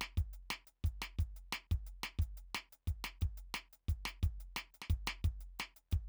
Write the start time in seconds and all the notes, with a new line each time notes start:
0.01 snare, closed hi-hat
0.17 kick, closed hi-hat
0.33 closed hi-hat
0.50 snare, closed hi-hat
0.67 closed hi-hat
0.84 kick, closed hi-hat
1.02 snare, closed hi-hat
1.19 kick, closed hi-hat
1.36 closed hi-hat
1.52 snare, closed hi-hat
1.71 kick, closed hi-hat
1.86 closed hi-hat
2.03 snare, closed hi-hat
2.19 kick, closed hi-hat
2.37 closed hi-hat
2.55 snare, closed hi-hat
2.72 closed hi-hat
2.87 kick, closed hi-hat
3.04 snare, closed hi-hat
3.21 kick, closed hi-hat
3.37 closed hi-hat
3.54 snare, closed hi-hat
3.73 closed hi-hat
3.88 kick, closed hi-hat
4.05 snare, closed hi-hat
4.23 kick, closed hi-hat
4.40 closed hi-hat
4.56 snare, closed hi-hat
4.74 closed hi-hat
4.82 snare
4.90 kick, closed hi-hat
5.07 snare, closed hi-hat
5.24 kick, closed hi-hat
5.41 closed hi-hat
5.59 snare, closed hi-hat
5.76 closed hi-hat
5.91 kick, closed hi-hat